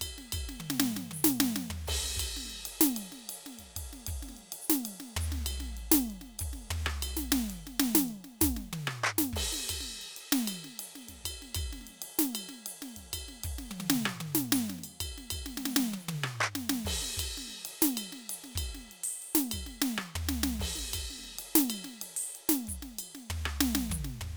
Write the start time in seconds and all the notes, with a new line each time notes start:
0.01 kick, hi-hat pedal, ride bell
0.18 snare
0.32 kick, ride bell
0.40 kick
0.49 snare
0.60 mid tom
0.70 snare
0.76 snare, hi-hat pedal
0.97 snare
1.11 hi-hat pedal, mid tom
1.24 snare
1.40 snare
1.56 snare
1.70 floor tom
1.85 kick, hi-hat pedal, crash
2.04 snare
2.17 kick, ride bell
2.37 snare
2.45 snare
2.50 ride
2.65 ride
2.81 snare, hi-hat pedal
2.96 ride
3.12 snare
3.29 hi-hat pedal, ride
3.46 snare
3.59 kick, snare, ride
3.76 kick, hi-hat pedal, ride
3.93 snare
4.07 kick, ride
4.14 kick
4.23 snare
4.29 snare
4.34 snare, ride
4.52 ride
4.62 hi-hat pedal
4.70 snare
4.85 ride
5.00 snare
5.17 floor tom
5.21 hi-hat pedal
5.32 snare
5.46 ride bell
5.60 snare
5.77 ride
5.92 snare
6.10 hi-hat pedal, ride
6.21 snare
6.39 kick, hi-hat pedal, ride
6.47 kick
6.53 snare
6.71 floor tom
6.86 cross-stick
7.03 ride bell
7.17 snare
7.31 snare, hi-hat pedal
7.50 hi-hat pedal, ride
7.67 snare
7.80 snare
7.95 snare
8.08 ride
8.24 snare
8.41 kick, snare, hi-hat pedal
8.48 kick
8.57 snare
8.73 mid tom
8.87 cross-stick
9.04 percussion
9.18 snare
9.33 kick, hi-hat pedal, crash
9.42 kick
9.52 snare
9.69 kick, ride bell
9.80 snare
9.89 snare
10.01 ride
10.17 ride
10.32 snare, hi-hat pedal
10.48 ride bell
10.64 snare
10.79 hi-hat pedal, ride
10.96 snare
11.08 kick, snare, ride
11.25 kick, hi-hat pedal, ride bell
11.42 snare
11.55 kick, ride bell
11.62 kick
11.73 snare
11.81 snare
11.87 snare, ride
12.02 ride
12.12 hi-hat pedal
12.19 snare
12.35 ride bell
12.49 snare
12.66 hi-hat pedal, ride
12.82 snare
12.96 kick, snare, ride
13.13 kick, ride bell
13.28 snare
13.44 kick, ride
13.50 kick
13.58 snare
13.71 high tom
13.79 hi-hat pedal, high tom
13.90 snare
14.06 cross-stick, hi-hat pedal
14.20 mid tom
14.35 snare
14.52 snare, hi-hat pedal
14.70 snare
14.79 snare
14.84 ride bell
14.89 snare
15.00 kick, ride bell
15.18 snare
15.30 kick, ride bell
15.46 snare
15.57 snare
15.66 snare
15.71 hi-hat pedal
15.76 snare
15.94 high tom
16.00 hi-hat pedal
16.09 mid tom
16.24 cross-stick
16.28 hi-hat pedal
16.41 percussion
16.55 snare
16.70 snare
16.85 kick, hi-hat pedal, crash
16.95 kick
17.02 snare
17.17 kick, ride bell
17.38 snare
17.48 snare, ride
17.65 ride
17.82 snare
17.97 ride bell
18.12 snare
18.29 hi-hat pedal, ride
18.44 snare
18.55 kick, ride bell
18.62 kick
18.75 snare
18.91 ride
19.04 open hi-hat
19.22 ride
19.35 snare
19.51 kick, ride bell
19.67 snare
19.82 snare
19.98 cross-stick
20.15 floor tom
20.29 snare
20.43 snare
20.60 kick, crash
20.66 kick
20.75 snare
20.93 kick, ride bell
21.10 snare
21.18 snare
21.24 snare, ride
21.29 snare
21.39 ride
21.55 snare
21.70 ride bell
21.84 snare
22.02 ride
22.17 open hi-hat
22.35 ride
22.49 snare
22.67 kick, hi-hat pedal, ride
22.83 snare
22.99 ride bell
23.15 snare
23.30 floor tom
23.46 cross-stick
23.61 snare
23.75 snare
23.90 kick, hi-hat pedal, mid tom
23.95 kick
24.05 snare
24.21 floor tom